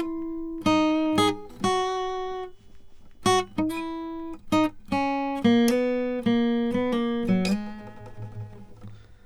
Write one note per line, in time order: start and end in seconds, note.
0.00 0.63 E4
0.67 1.36 D#4
1.19 1.33 G#4
1.65 2.54 F#4
3.27 3.46 F#4
3.59 4.39 E4
4.53 4.73 D#4
4.93 5.45 C#4
5.45 5.69 A#3
5.69 6.23 B3
6.27 6.76 A#3
6.76 6.93 B3
6.93 7.28 A#3
7.30 7.46 F#3
7.46 8.58 G#3